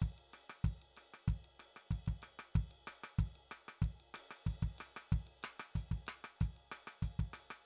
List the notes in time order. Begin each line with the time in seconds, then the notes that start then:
0.01 kick, hi-hat pedal, ride
0.19 ride
0.34 cross-stick, ride
0.50 cross-stick
0.65 kick, hi-hat pedal, ride
0.82 ride
0.97 cross-stick, ride
1.14 cross-stick
1.28 kick, hi-hat pedal, ride
1.45 ride
1.60 cross-stick, ride
1.77 cross-stick
1.91 kick, hi-hat pedal, ride
2.07 kick, ride
2.23 cross-stick, ride
2.40 cross-stick
2.54 kick, hi-hat pedal, ride
2.72 ride
2.88 cross-stick, ride
3.04 cross-stick
3.19 kick, hi-hat pedal, ride
3.36 ride
3.52 cross-stick, ride
3.69 cross-stick
3.82 kick, hi-hat pedal, ride
4.01 ride
4.15 cross-stick, ride
4.31 cross-stick
4.47 kick, hi-hat pedal, ride
4.63 kick, ride
4.79 cross-stick, ride
4.97 cross-stick
5.11 kick, hi-hat pedal, ride
5.28 ride
5.44 cross-stick, ride
5.60 cross-stick
5.76 kick, hi-hat pedal, ride
5.92 kick, ride
6.07 cross-stick, ride
6.25 cross-stick
6.41 kick, hi-hat pedal, ride
6.57 ride
6.72 cross-stick, ride
6.88 cross-stick
7.02 kick, hi-hat pedal, ride
7.20 kick, ride
7.34 cross-stick, ride
7.51 cross-stick